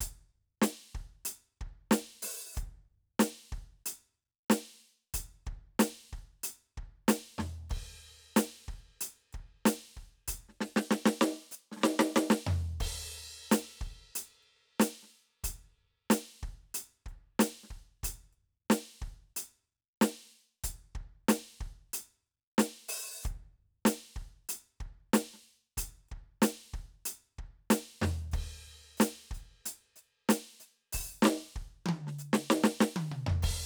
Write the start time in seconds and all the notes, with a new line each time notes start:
0.01 closed hi-hat, kick
0.62 closed hi-hat, snare
0.95 kick
1.26 closed hi-hat
1.61 kick
1.91 closed hi-hat, snare
2.23 open hi-hat, snare
2.55 closed hi-hat, kick, hi-hat pedal
3.20 closed hi-hat, snare
3.52 kick
3.86 closed hi-hat
4.50 closed hi-hat, snare
5.14 closed hi-hat, kick
5.47 kick, closed hi-hat
5.80 closed hi-hat, snare
6.13 kick
6.44 closed hi-hat
6.78 kick
7.08 closed hi-hat, snare
7.39 snare, floor tom
7.70 kick, crash
8.37 closed hi-hat, snare
8.68 kick
9.01 closed hi-hat
9.33 kick, closed hi-hat
9.66 closed hi-hat, snare
9.97 kick
10.28 closed hi-hat, kick
10.49 snare
10.61 snare
10.77 snare
10.91 snare
11.06 snare
11.22 snare
11.52 hi-hat pedal
11.72 snare
11.77 snare
11.81 snare
11.84 snare
12.00 snare
12.16 snare, hi-hat pedal
12.31 snare
12.47 floor tom
12.81 kick, crash
13.52 closed hi-hat, snare
13.81 kick, closed hi-hat
14.16 closed hi-hat
14.43 closed hi-hat
14.80 closed hi-hat, snare
15.03 snare
15.44 closed hi-hat, kick
16.10 closed hi-hat, snare
16.43 kick
16.75 closed hi-hat
17.06 kick, closed hi-hat
17.40 closed hi-hat, snare
17.64 snare
17.71 kick, closed hi-hat
18.04 closed hi-hat, kick
18.33 closed hi-hat
18.70 closed hi-hat, snare
19.02 kick, closed hi-hat
19.37 closed hi-hat
20.02 closed hi-hat, snare
20.64 closed hi-hat, kick
20.95 kick, closed hi-hat
21.29 closed hi-hat, snare
21.59 kick, closed hi-hat
21.94 closed hi-hat
22.27 closed hi-hat
22.58 closed hi-hat, snare
22.89 open hi-hat
23.23 closed hi-hat, kick, hi-hat pedal
23.86 closed hi-hat, snare
24.16 kick
24.49 closed hi-hat
24.81 kick, closed hi-hat
25.14 closed hi-hat, snare
25.34 snare
25.78 closed hi-hat, kick
26.09 kick, closed hi-hat
26.42 closed hi-hat, snare
26.74 kick, closed hi-hat
27.06 closed hi-hat
27.38 kick, closed hi-hat
27.71 closed hi-hat, snare
28.02 snare, floor tom
28.32 kick, hi-hat pedal, crash
28.98 closed hi-hat, snare, hi-hat pedal
29.31 closed hi-hat, kick
29.66 closed hi-hat, snare
29.96 hi-hat pedal
30.29 closed hi-hat, snare
30.60 closed hi-hat, hi-hat pedal
30.93 open hi-hat, kick
31.23 snare
31.26 snare
31.56 kick
31.86 high tom
31.89 high tom
32.07 snare
32.19 hi-hat pedal
32.33 snare
32.51 snare
32.64 snare
32.81 snare, hi-hat pedal
32.96 high tom
33.12 mid tom
33.27 kick, floor tom
33.43 kick, crash